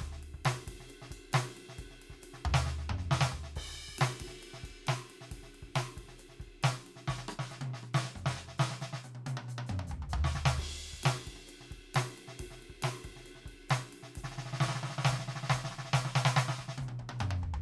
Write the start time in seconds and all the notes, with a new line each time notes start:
0.01 kick, hi-hat pedal, ride bell
0.08 kick
0.12 kick, snare
0.23 ride
0.34 kick
0.39 kick
0.45 snare, hi-hat pedal, ride
0.67 kick, ride
0.74 kick
0.80 snare
0.88 hi-hat pedal, ride
1.02 snare
1.11 kick, ride bell
1.17 kick
1.32 snare, hi-hat pedal, ride
1.57 ride
1.69 snare
1.78 kick, hi-hat pedal, ride
1.85 kick
1.90 snare
2.02 ride
2.10 kick, snare
2.15 kick
2.22 hi-hat pedal, ride
2.33 snare
2.45 floor tom
2.54 snare
2.66 snare, hi-hat pedal
2.78 snare
2.89 kick, mid tom
2.98 kick, snare
3.11 snare, hi-hat pedal
3.21 snare
3.28 snare, floor tom
3.43 snare
3.56 kick, hi-hat pedal, crash
3.64 kick, snare
3.68 kick
3.73 snare
3.88 kick
3.98 snare, hi-hat pedal, ride
4.20 kick, ride
4.27 kick, snare
4.41 hi-hat pedal, ride
4.53 snare
4.63 kick, ride bell
4.70 kick
4.86 snare, hi-hat pedal, ride
5.10 ride
5.21 snare
5.31 kick, hi-hat pedal, ride
5.38 kick
5.43 snare
5.50 snare
5.54 ride
5.62 kick
5.68 kick
5.75 snare, hi-hat pedal, ride
5.97 kick, ride
6.03 kick
6.08 snare
6.18 hi-hat pedal, ride
6.29 snare
6.40 kick, ride bell
6.46 kick
6.62 snare, hi-hat pedal, ride
6.86 ride
6.96 snare
7.08 kick, snare, hi-hat pedal
7.15 kick, snare
7.28 cross-stick
7.32 cross-stick
7.39 snare
7.50 snare, hi-hat pedal
7.61 high tom
7.73 snare
7.83 cross-stick
7.94 snare, hi-hat pedal
8.15 kick, hi-hat pedal, mid tom
8.26 snare
8.36 snare
8.48 snare
8.58 snare, hi-hat pedal
8.71 snare
8.81 snare, hi-hat pedal
8.93 snare
9.04 hi-hat pedal, high tom
9.15 high tom
9.26 hi-hat pedal, high tom
9.37 high tom
9.48 hi-hat pedal, high tom
9.58 high tom
9.66 kick, hi-hat pedal, mid tom
9.75 kick
9.79 mid tom
9.87 kick, hi-hat pedal
9.91 floor tom
10.02 floor tom
10.09 hi-hat pedal, floor tom
10.14 kick
10.24 snare
10.33 kick, snare, hi-hat pedal
10.44 kick, snare
10.58 kick, ride
10.68 kick, cross-stick
10.77 hi-hat pedal
10.93 kick
11.03 snare, hi-hat pedal, ride
11.27 kick, ride
11.33 kick, snare
11.47 hi-hat pedal, ride
11.60 snare
11.71 kick, ride
11.77 kick
11.94 snare, hi-hat pedal, ride
12.18 ride
12.28 snare
12.39 kick, hi-hat pedal, ride
12.46 kick
12.51 snare
12.62 ride
12.69 kick
12.75 kick
12.82 snare, hi-hat pedal, ride
13.04 kick, ride
13.10 kick
13.16 snare
13.26 hi-hat pedal, ride
13.35 snare
13.40 snare
13.45 kick, ride
13.69 snare, hi-hat pedal, ride
13.93 ride
14.03 snare
14.15 kick, hi-hat pedal, ride
14.24 kick, snare
14.31 snare
14.38 snare
14.45 snare
14.53 snare
14.60 kick, snare, hi-hat pedal
14.68 snare
14.75 snare
14.83 snare
14.90 snare
14.98 snare
15.05 snare, hi-hat pedal
15.09 kick, snare
15.19 snare
15.28 snare
15.35 snare
15.43 snare
15.50 kick, snare, hi-hat pedal
15.57 snare
15.64 snare
15.71 snare
15.78 snare
15.85 snare
15.93 kick, snare, hi-hat pedal
16.05 snare
16.15 snare
16.25 snare
16.36 snare, hi-hat pedal
16.48 snare
16.59 kick, hi-hat pedal
16.68 snare
16.78 kick, hi-hat pedal, high tom
16.86 kick, high tom
16.99 kick, high tom
17.09 high tom
17.19 kick, hi-hat pedal, mid tom
17.28 kick, mid tom
17.37 hi-hat pedal
17.42 kick, floor tom
17.54 floor tom